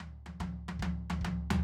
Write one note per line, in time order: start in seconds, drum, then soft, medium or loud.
0.00 floor tom medium
0.26 floor tom medium
0.26 high tom medium
0.40 kick soft
0.40 floor tom medium
0.40 high tom medium
0.68 floor tom medium
0.68 high tom medium
0.79 kick soft
0.79 floor tom medium
0.79 high tom loud
1.10 floor tom loud
1.10 high tom medium
1.21 kick soft
1.21 floor tom medium
1.21 high tom loud
1.50 floor tom loud
1.50 high tom loud